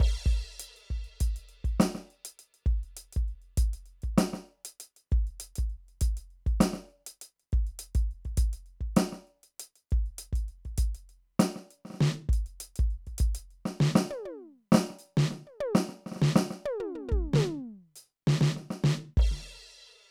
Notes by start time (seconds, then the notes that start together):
0.00 kick, crash
0.13 closed hi-hat
0.26 closed hi-hat, kick
0.43 closed hi-hat
0.59 closed hi-hat
0.76 closed hi-hat
0.90 kick, closed hi-hat
1.04 closed hi-hat
1.20 closed hi-hat, kick
1.36 closed hi-hat
1.49 closed hi-hat
1.64 kick, closed hi-hat
1.80 closed hi-hat, kick, snare
1.95 snare
2.10 closed hi-hat
2.25 closed hi-hat
2.39 closed hi-hat
2.54 closed hi-hat
2.66 kick, closed hi-hat
2.83 closed hi-hat
2.96 closed hi-hat
3.12 closed hi-hat, kick
3.28 closed hi-hat
3.42 closed hi-hat
3.57 closed hi-hat, kick
3.73 closed hi-hat
3.85 closed hi-hat
4.02 kick, closed hi-hat
4.18 closed hi-hat, snare
4.33 snare
4.47 closed hi-hat
4.65 closed hi-hat
4.80 closed hi-hat
4.96 closed hi-hat
5.12 kick, closed hi-hat
5.27 closed hi-hat
5.40 closed hi-hat
5.55 closed hi-hat, kick
5.70 closed hi-hat
5.88 closed hi-hat
6.01 closed hi-hat, kick
6.17 closed hi-hat
6.30 closed hi-hat
6.46 kick, closed hi-hat
6.60 closed hi-hat, snare
6.73 snare
6.90 closed hi-hat
7.06 closed hi-hat
7.21 closed hi-hat
7.40 closed hi-hat
7.52 kick, closed hi-hat
7.67 closed hi-hat
7.79 closed hi-hat
7.95 closed hi-hat, kick
8.11 closed hi-hat
8.25 kick, closed hi-hat
8.37 closed hi-hat, kick
8.53 closed hi-hat
8.66 closed hi-hat
8.81 kick
8.96 closed hi-hat, snare
9.12 snare
9.27 closed hi-hat
9.43 closed hi-hat
9.60 closed hi-hat
9.76 closed hi-hat
9.91 kick, closed hi-hat
10.06 closed hi-hat
10.18 closed hi-hat
10.33 closed hi-hat, kick
10.48 closed hi-hat
10.65 kick, closed hi-hat
10.78 closed hi-hat, kick
10.95 closed hi-hat
11.09 closed hi-hat
11.39 closed hi-hat, snare
11.56 snare
11.71 closed hi-hat
11.85 snare
11.90 snare
11.94 snare
12.01 snare
12.29 kick
12.33 closed hi-hat
12.46 closed hi-hat
12.60 closed hi-hat
12.76 closed hi-hat, kick
12.90 closed hi-hat
13.07 closed hi-hat, kick
13.18 closed hi-hat, kick
13.35 closed hi-hat
13.51 closed hi-hat
13.65 snare
13.80 snare
13.95 snare
14.10 high tom
14.25 high tom
14.72 snare
14.74 snare
14.90 snare
14.99 hi-hat pedal
15.17 snare
15.31 snare
15.46 high tom
15.60 high tom
15.75 snare
15.89 snare
16.06 snare
16.12 snare
16.16 snare
16.22 snare
16.36 snare
16.50 snare
16.65 high tom
16.80 mid tom
16.95 mid tom
17.08 kick, mid tom
17.34 snare, mid tom
17.96 hi-hat pedal
18.27 snare
18.41 snare
18.56 snare
18.70 snare
18.84 snare
19.17 kick, crash
19.31 snare